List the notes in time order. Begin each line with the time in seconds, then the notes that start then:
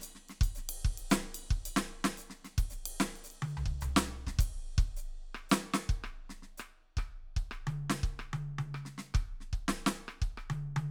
0.01 hi-hat pedal, ride bell
0.13 kick, snare
0.29 snare, ride
0.41 kick, ride bell
0.55 snare, hi-hat pedal
0.69 ride
0.84 kick
0.97 ride
1.10 snare, hi-hat pedal
1.34 ride bell
1.50 kick
1.65 hi-hat pedal, ride bell
1.76 snare
2.04 snare
2.17 hi-hat pedal, ride bell
2.30 snare
2.44 snare, ride bell
2.58 kick, ride
2.70 snare, hi-hat pedal
2.85 ride
3.00 snare
3.15 ride
3.24 hi-hat pedal
3.30 ride
3.42 high tom
3.47 hi-hat pedal
3.57 floor tom
3.65 kick
3.81 floor tom, hi-hat pedal
3.96 snare
4.26 kick, snare
4.39 kick, hi-hat pedal, ride
4.78 kick
4.96 hi-hat pedal
5.34 cross-stick
5.49 snare, hi-hat pedal
5.74 snare
5.86 kick, snare
6.04 cross-stick
6.29 snare
6.42 snare
6.57 cross-stick, hi-hat pedal
6.97 kick, cross-stick
7.36 kick
7.51 cross-stick
7.67 high tom
7.90 snare
8.03 kick
8.19 cross-stick
8.33 high tom
8.58 high tom
8.74 cross-stick
8.85 snare
8.98 snare
9.14 kick, cross-stick
9.40 snare
9.53 kick
9.68 snare
9.86 snare
10.08 cross-stick
10.22 kick
10.37 cross-stick
10.50 high tom
10.76 high tom